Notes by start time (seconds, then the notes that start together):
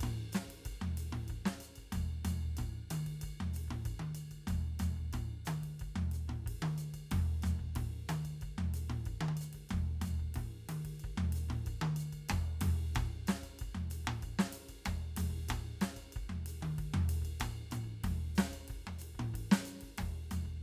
0.01 kick, mid tom, ride bell
0.33 snare, hi-hat pedal, ride bell
0.48 kick, ride
0.66 kick, ride bell
0.82 floor tom
0.98 hi-hat pedal, ride
1.13 kick, mid tom
1.29 kick, ride bell
1.46 snare
1.61 hi-hat pedal, ride bell
1.76 kick, ride bell
1.93 kick, floor tom, ride bell
2.25 floor tom, hi-hat pedal, ride bell
2.43 kick
2.58 kick, mid tom, ride bell
2.91 hi-hat pedal, high tom, ride bell
3.07 kick, ride
3.22 kick, ride bell
3.41 floor tom
3.54 hi-hat pedal, ride
3.68 kick, mid tom
3.86 kick, ride bell
4.00 high tom
4.15 hi-hat pedal, ride bell
4.31 kick, ride bell
4.48 kick, floor tom, ride bell
4.80 floor tom, hi-hat pedal, ride bell
4.97 kick
5.13 kick, mid tom, ride bell
5.46 hi-hat pedal, high tom, ride bell
5.62 kick, ride
5.80 kick, ride bell
5.96 floor tom
6.12 hi-hat pedal, ride
6.28 kick, mid tom
6.47 kick, ride
6.63 high tom
6.78 hi-hat pedal, ride bell
6.94 kick, ride bell
7.12 kick, floor tom, ride
7.43 floor tom, hi-hat pedal, ride bell
7.59 kick
7.76 kick, mid tom, ride
8.09 hi-hat pedal, high tom, ride bell
8.25 kick, ride bell
8.42 kick, ride bell
8.59 floor tom
8.74 hi-hat pedal, ride
8.89 kick, mid tom
9.06 kick, ride bell
9.21 high tom
9.29 high tom
9.37 hi-hat pedal, ride bell
9.53 kick, ride
9.70 kick, floor tom, ride bell
10.02 floor tom, hi-hat pedal, ride bell
10.20 kick
10.35 kick, mid tom, ride
10.69 hi-hat pedal, high tom, ride
10.85 kick, ride
11.00 ride bell
11.04 kick
11.18 floor tom
11.33 hi-hat pedal, ride
11.49 kick, mid tom
11.67 kick, ride bell
11.82 high tom
11.88 high tom
11.97 hi-hat pedal, ride bell
12.13 kick, ride bell
12.29 kick, ride bell, floor tom
12.61 floor tom, hi-hat pedal, ride
12.96 kick, mid tom, ride bell
13.28 snare, hi-hat pedal, ride bell
13.43 kick, ride bell
13.60 kick, ride bell
13.75 floor tom
13.91 hi-hat pedal, ride
14.05 kick, mid tom
14.23 kick, ride bell
14.39 snare
14.53 hi-hat pedal, ride
14.69 kick, ride bell
14.86 kick, ride bell, floor tom
15.17 floor tom, hi-hat pedal, ride
15.31 kick
15.49 kick, mid tom, ride bell
15.82 snare, hi-hat pedal, ride bell
15.97 kick, ride bell
16.13 kick, ride bell
16.30 floor tom
16.47 hi-hat pedal, ride
16.61 kick, high tom
16.79 kick, ride
16.94 floor tom
17.09 hi-hat pedal, ride
17.22 kick, ride bell
17.41 kick, mid tom, ride bell
17.72 hi-hat pedal, mid tom, ride bell
17.84 kick
18.04 kick, floor tom, ride
18.36 snare, hi-hat pedal, ride bell
18.51 kick, ride bell
18.69 kick, ride
18.87 floor tom
18.99 hi-hat pedal, ride
19.15 kick
19.20 mid tom
19.34 kick, ride
19.52 snare
19.66 hi-hat pedal, ride bell
19.81 kick, ride
19.98 kick, ride, floor tom
20.32 floor tom, hi-hat pedal, ride bell
20.46 kick